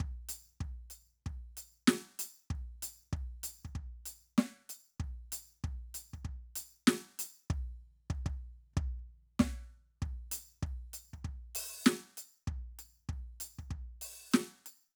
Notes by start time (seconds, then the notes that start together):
0.00 kick, crash
0.29 percussion
0.60 kick, crash
0.90 percussion
1.26 kick, crash
1.57 percussion
1.87 snare
2.19 percussion
2.50 kick
2.55 crash, ride
2.82 percussion
3.13 kick, crash
3.43 percussion
3.65 kick
3.75 kick
4.05 percussion
4.38 snare
4.69 percussion
5.00 kick
5.04 crash
5.32 percussion
5.64 kick, crash
5.94 percussion
6.13 kick
6.25 kick
6.55 percussion
6.87 snare
7.19 percussion
7.50 kick, crash
8.10 kick, crash
8.15 ride
8.26 kick, crash
8.73 kick
8.77 kick
8.99 kick
9.39 kick, snare
10.02 kick, crash
10.31 percussion
10.62 kick, crash
10.67 ride
10.93 percussion
11.13 kick
11.24 kick, crash
11.55 percussion
11.85 snare, percussion
12.17 percussion
12.47 kick
12.79 percussion
13.09 kick
13.13 crash
13.40 percussion
13.58 kick
13.70 kick
14.01 percussion
14.31 snare, percussion
14.66 percussion